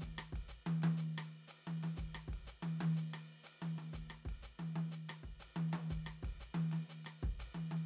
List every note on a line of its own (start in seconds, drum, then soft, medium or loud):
0.01 kick soft
0.01 hi-hat pedal medium
0.01 ride soft
0.19 cross-stick medium
0.33 kick soft
0.33 ride medium
0.49 hi-hat pedal medium
0.67 high tom medium
0.67 ride medium
0.83 high tom medium
0.83 ride soft
0.98 hi-hat pedal medium
1.18 cross-stick medium
1.18 ride medium
1.48 hi-hat pedal medium
1.48 ride medium
1.67 high tom medium
1.83 high tom medium
1.83 ride medium
1.97 kick soft
1.97 hi-hat pedal medium
1.97 ride soft
2.15 cross-stick medium
2.28 kick soft
2.34 ride medium
2.47 hi-hat pedal medium
2.63 high tom medium
2.63 ride medium
2.81 high tom medium
2.81 ride medium
2.97 hi-hat pedal medium
3.14 cross-stick medium
3.14 ride medium
3.44 hi-hat pedal medium
3.44 ride medium
3.62 hi-hat pedal soft
3.62 high tom medium
3.79 high tom soft
3.79 ride soft
3.93 kick soft
3.93 hi-hat pedal medium
3.93 ride soft
4.10 cross-stick soft
4.26 kick soft
4.26 ride medium
4.43 hi-hat pedal medium
4.60 high tom medium
4.60 ride medium
4.76 high tom medium
4.76 ride soft
4.92 hi-hat pedal medium
5.09 cross-stick medium
5.09 ride medium
5.24 kick soft
5.40 hi-hat pedal medium
5.40 ride medium
5.56 high tom medium
5.62 hi-hat pedal soft
5.73 high tom medium
5.73 ride medium
5.90 kick soft
5.90 hi-hat pedal medium
5.90 ride soft
6.07 cross-stick medium
6.23 kick soft
6.23 ride medium
6.41 hi-hat pedal medium
6.55 high tom medium
6.55 ride medium
6.72 high tom medium
6.72 ride medium
6.90 hi-hat pedal medium
7.05 cross-stick medium
7.05 ride medium
7.23 kick medium
7.40 hi-hat pedal medium
7.40 ride medium
7.55 high tom medium
7.72 high tom medium
7.72 ride medium